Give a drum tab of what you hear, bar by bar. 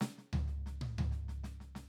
HH |p-----------|
SD |oo-oo--ooooo|
T1 |-----o------|
FT |--o---o-----|